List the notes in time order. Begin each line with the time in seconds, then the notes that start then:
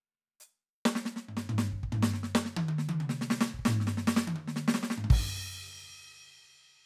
0.40 hi-hat pedal
0.85 snare
0.95 snare
1.16 snare
1.28 floor tom
1.37 snare
1.49 floor tom
1.58 snare
1.72 kick
1.83 kick
1.92 floor tom
2.02 snare
2.13 snare
2.23 snare
2.35 snare
2.45 snare
2.57 high tom
2.68 high tom
2.78 snare
2.89 high tom
3.00 mid tom
3.09 snare
3.21 snare
3.30 snare
3.41 snare
3.54 kick
3.59 kick
3.65 snare, floor tom, hi-hat pedal
3.80 snare
3.87 snare
3.97 snare
4.07 snare, hi-hat pedal
4.16 snare
4.27 high tom
4.36 high tom
4.47 snare
4.56 snare
4.68 snare
4.74 snare
4.83 snare
4.90 snare
4.97 floor tom
5.04 floor tom
5.10 kick, crash